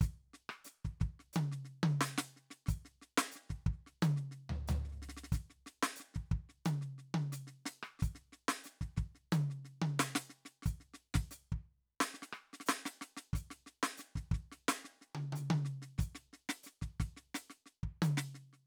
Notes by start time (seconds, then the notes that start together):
0.01 kick, snare, hi-hat pedal
0.34 snare
0.49 cross-stick
0.65 snare, hi-hat pedal
0.85 kick, snare
1.00 kick, snare
1.19 snare
1.33 hi-hat pedal, high tom
1.52 snare
1.65 snare
1.83 high tom
2.01 snare, hi-hat pedal
2.18 snare
2.36 snare
2.51 snare
2.66 kick, snare, hi-hat pedal
2.85 snare
3.02 snare
3.18 snare
3.32 snare, hi-hat pedal
3.49 kick, snare
3.66 kick
3.73 snare
3.87 snare
4.02 hi-hat pedal, high tom
4.17 snare
4.31 snare
4.49 floor tom
4.68 floor tom, hi-hat pedal
4.84 snare
4.88 snare
4.92 snare
4.96 snare
5.02 snare
5.09 snare
5.17 snare
5.24 snare
5.32 kick, snare, hi-hat pedal
5.50 snare
5.66 snare
5.83 snare
5.96 snare, hi-hat pedal
6.14 kick, snare
6.31 kick
6.49 snare
6.65 hi-hat pedal, high tom
6.81 snare
6.98 snare
7.14 high tom
7.32 snare, hi-hat pedal
7.47 snare
7.66 snare
7.83 cross-stick
7.99 kick, snare, hi-hat pedal
8.15 snare
8.33 snare
8.48 snare
8.64 snare, hi-hat pedal
8.81 kick, snare
8.97 kick, snare
9.15 snare
9.32 hi-hat pedal, high tom
9.50 snare
9.65 snare
9.82 high tom
9.99 snare, hi-hat pedal
10.15 snare
10.30 snare
10.45 snare
10.63 kick, snare, hi-hat pedal
10.80 snare
10.94 snare
11.14 kick, snare
11.31 snare, hi-hat pedal
11.52 kick
12.00 snare, hi-hat pedal
12.14 snare
12.22 snare
12.33 cross-stick
12.53 snare
12.60 snare
12.66 snare, hi-hat pedal
12.86 snare
13.01 snare
13.17 snare
13.33 kick, snare, hi-hat pedal
13.51 snare
13.66 snare
13.83 snare
13.98 snare, hi-hat pedal
14.16 kick, snare
14.31 kick, snare
14.52 snare
14.68 snare, hi-hat pedal
14.85 snare
15.01 snare
15.15 high tom
15.33 hi-hat pedal, high tom
15.50 high tom
15.65 snare
15.82 snare
15.98 kick, snare, hi-hat pedal
16.15 snare
16.33 snare
16.49 snare
16.63 snare, hi-hat pedal
16.82 kick, snare
17.00 kick, snare
17.17 snare
17.35 snare, hi-hat pedal
17.50 snare
17.66 snare
17.83 kick
18.02 hi-hat pedal, high tom
18.17 snare
18.35 snare
18.53 snare